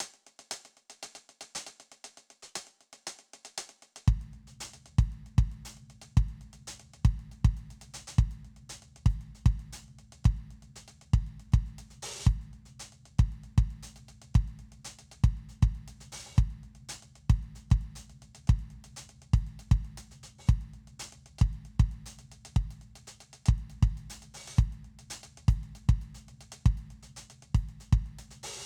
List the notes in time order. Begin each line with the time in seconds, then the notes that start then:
0.01 closed hi-hat
0.14 closed hi-hat
0.26 closed hi-hat
0.39 closed hi-hat
0.51 closed hi-hat
0.65 closed hi-hat
0.77 closed hi-hat
0.90 closed hi-hat
1.03 closed hi-hat
1.15 closed hi-hat
1.29 closed hi-hat
1.41 closed hi-hat
1.55 closed hi-hat
1.67 closed hi-hat
1.80 closed hi-hat
1.92 closed hi-hat
2.04 closed hi-hat
2.17 closed hi-hat
2.30 closed hi-hat
2.42 closed hi-hat
2.55 closed hi-hat
2.67 closed hi-hat
2.81 closed hi-hat
2.93 closed hi-hat
3.07 closed hi-hat
3.19 closed hi-hat
3.33 closed hi-hat
3.45 closed hi-hat
3.58 closed hi-hat
3.69 closed hi-hat
3.82 closed hi-hat
3.96 closed hi-hat
4.08 kick, closed hi-hat
4.21 closed hi-hat
4.33 closed hi-hat
4.47 closed hi-hat
4.60 closed hi-hat
4.73 closed hi-hat
4.86 closed hi-hat
4.98 kick, closed hi-hat
5.12 closed hi-hat
5.26 closed hi-hat
5.38 kick, closed hi-hat
5.51 closed hi-hat
5.65 closed hi-hat
5.77 closed hi-hat
5.90 closed hi-hat
6.01 closed hi-hat
6.17 kick, closed hi-hat
6.28 closed hi-hat
6.41 closed hi-hat
6.53 closed hi-hat
6.67 closed hi-hat
6.79 closed hi-hat
6.93 closed hi-hat
7.05 kick, closed hi-hat
7.19 closed hi-hat
7.31 closed hi-hat
7.45 kick, closed hi-hat
7.57 closed hi-hat
7.70 closed hi-hat
7.81 closed hi-hat
7.94 closed hi-hat
8.07 closed hi-hat
8.18 kick, closed hi-hat
8.31 closed hi-hat
8.45 closed hi-hat
8.56 closed hi-hat
8.69 closed hi-hat
8.82 closed hi-hat
8.96 closed hi-hat
9.06 closed hi-hat, kick
9.21 closed hi-hat
9.35 closed hi-hat
9.46 kick, closed hi-hat
9.59 closed hi-hat
9.73 closed hi-hat
9.88 closed hi-hat
9.99 closed hi-hat
10.12 closed hi-hat
10.24 kick, closed hi-hat
10.37 closed hi-hat
10.51 closed hi-hat
10.62 closed hi-hat
10.76 closed hi-hat
10.88 closed hi-hat
11.01 closed hi-hat
11.13 kick, closed hi-hat
11.26 closed hi-hat
11.40 closed hi-hat
11.52 kick, closed hi-hat
11.65 closed hi-hat
11.78 closed hi-hat
11.90 closed hi-hat
12.02 open hi-hat
12.18 open hi-hat
12.25 kick, hi-hat pedal
12.29 closed hi-hat
12.41 closed hi-hat
12.53 closed hi-hat
12.65 closed hi-hat
12.79 closed hi-hat
12.92 closed hi-hat
13.05 closed hi-hat
13.18 kick, closed hi-hat
13.32 closed hi-hat
13.43 closed hi-hat
13.58 kick, closed hi-hat
13.70 closed hi-hat
13.83 closed hi-hat
13.96 closed hi-hat
14.08 closed hi-hat
14.22 closed hi-hat
14.34 kick, closed hi-hat
14.48 closed hi-hat
14.59 closed hi-hat
14.72 closed hi-hat
14.85 closed hi-hat
14.99 closed hi-hat
15.11 closed hi-hat
15.24 kick, closed hi-hat
15.37 closed hi-hat
15.49 closed hi-hat
15.62 kick, closed hi-hat
15.75 closed hi-hat
15.88 closed hi-hat
16.00 closed hi-hat
16.12 open hi-hat
16.25 open hi-hat
16.35 kick, hi-hat pedal
16.39 closed hi-hat
16.50 closed hi-hat
16.63 closed hi-hat
16.75 closed hi-hat
16.89 closed hi-hat
17.02 closed hi-hat
17.15 closed hi-hat
17.29 closed hi-hat, kick
17.43 closed hi-hat
17.55 closed hi-hat
17.70 kick, closed hi-hat
17.81 closed hi-hat
17.95 closed hi-hat
18.10 closed hi-hat
18.22 closed hi-hat
18.35 closed hi-hat
18.47 kick, closed hi-hat
18.59 closed hi-hat
18.70 closed hi-hat
18.84 closed hi-hat
18.96 closed hi-hat
19.09 closed hi-hat
19.22 closed hi-hat
19.33 kick, closed hi-hat
19.46 closed hi-hat
19.59 closed hi-hat
19.71 kick, closed hi-hat
19.85 closed hi-hat
19.97 closed hi-hat
20.11 closed hi-hat
20.23 open hi-hat
20.38 open hi-hat
20.47 kick, closed hi-hat, hi-hat pedal
20.61 closed hi-hat
20.73 closed hi-hat
20.87 closed hi-hat
20.99 closed hi-hat
21.12 closed hi-hat
21.26 closed hi-hat
21.38 kick, closed hi-hat
21.53 closed hi-hat
21.65 closed hi-hat
21.79 kick, closed hi-hat
21.91 closed hi-hat
22.06 closed hi-hat
22.19 closed hi-hat
22.32 closed hi-hat
22.45 closed hi-hat
22.56 kick, closed hi-hat
22.71 closed hi-hat
22.81 closed hi-hat
22.95 closed hi-hat
23.07 closed hi-hat
23.20 closed hi-hat
23.33 closed hi-hat
23.46 kick, closed hi-hat
23.58 closed hi-hat
23.70 closed hi-hat
23.82 kick, closed hi-hat
23.97 closed hi-hat
24.10 closed hi-hat
24.22 closed hi-hat
24.34 open hi-hat
24.47 open hi-hat
24.57 kick, closed hi-hat, hi-hat pedal
24.72 closed hi-hat
24.84 closed hi-hat
24.99 closed hi-hat
25.10 closed hi-hat
25.23 closed hi-hat
25.37 closed hi-hat
25.48 kick, closed hi-hat
25.63 closed hi-hat
25.75 closed hi-hat
25.89 kick, closed hi-hat
26.01 closed hi-hat
26.14 closed hi-hat
26.28 closed hi-hat
26.41 closed hi-hat
26.52 closed hi-hat
26.66 kick, closed hi-hat
26.77 closed hi-hat
26.90 closed hi-hat
27.03 closed hi-hat
27.16 closed hi-hat
27.30 closed hi-hat
27.42 closed hi-hat
27.54 kick, closed hi-hat
27.69 closed hi-hat
27.80 closed hi-hat
27.93 kick, closed hi-hat
28.06 closed hi-hat
28.18 closed hi-hat
28.31 closed hi-hat
28.43 open hi-hat
28.58 open hi-hat